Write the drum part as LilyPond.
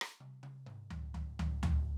\new DrumStaff \drummode { \time 4/4 \tempo 4 = 63 ss16 tommh16 tommh16 toml16 tomfh16 tomfh16 tomfh16 tomfh16 r4 r4 | }